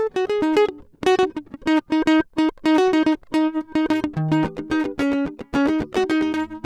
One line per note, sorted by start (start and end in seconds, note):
0.00 0.10 A4
0.17 0.28 F#4
0.31 0.45 G#4
0.43 0.60 D#4
0.58 0.68 G#4
1.07 1.19 F#4
1.68 1.83 D#4
1.93 2.06 D#4
2.08 2.25 D#4
2.40 2.54 D#4
2.67 2.83 D#4
2.79 3.06 F#4
2.94 3.05 D#4
3.08 3.18 D#4
3.35 3.63 D#4
3.76 3.89 D#4
3.91 4.01 D#4
4.18 4.52 D#3
4.33 4.51 D#4
4.72 4.85 D#4
5.00 5.14 C#4
5.14 5.28 C#4
5.55 5.67 C#4
5.68 5.90 D#4
6.11 6.34 D#4
6.35 6.47 D#4